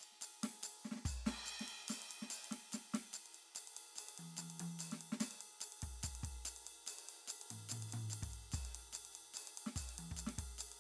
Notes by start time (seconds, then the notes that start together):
0.01 ride, percussion
0.12 snare
0.22 ride, percussion
0.42 snare, ride, percussion
0.64 ride, percussion
0.84 snare, percussion
0.92 snare
0.96 snare
1.06 kick, percussion
1.27 snare, percussion, ride
1.47 ride, percussion
1.60 snare, ride
1.67 ride, percussion
1.89 snare, ride, percussion
2.03 ride
2.10 ride, percussion
2.22 snare
2.31 ride, percussion
2.45 ride
2.51 snare, ride, percussion
2.73 snare, ride, percussion
2.93 snare, ride, percussion
3.14 ride, percussion
3.27 ride
3.33 ride, percussion
3.56 ride, percussion
3.68 ride
3.75 ride, percussion
3.96 ride, percussion
4.09 ride
4.14 ride, percussion
4.20 high tom
4.37 high tom, ride, percussion
4.51 ride
4.57 high tom, ride, percussion
4.80 ride, percussion
4.92 snare, ride
4.98 ride, percussion
5.13 snare
5.21 snare, ride, percussion
5.32 ride
5.40 ride, percussion
5.61 ride, percussion
5.73 ride
5.83 kick, ride
6.04 kick, ride, percussion
6.16 ride
6.23 kick, ride, percussion
6.46 ride, percussion
6.57 ride
6.65 ride, percussion
6.87 ride, percussion
6.99 ride
7.09 ride
7.28 ride, percussion
7.42 ride
7.47 ride, percussion
7.51 floor tom
7.70 floor tom, ride, percussion
7.83 ride
7.90 ride, percussion
7.94 floor tom
8.11 ride, percussion
8.23 kick, ride
8.30 percussion
8.34 ride
8.52 kick, ride, percussion
8.66 ride
8.75 ride
8.94 ride, percussion
9.06 ride
9.13 ride, percussion
9.34 ride, percussion
9.48 ride
9.53 percussion
9.58 ride
9.67 snare
9.76 kick, ride, percussion
9.90 ride
9.95 high tom, ride, percussion
10.12 kick
10.17 ride, percussion
10.27 snare, ride
10.37 kick, ride, percussion
10.59 ride, percussion
10.72 ride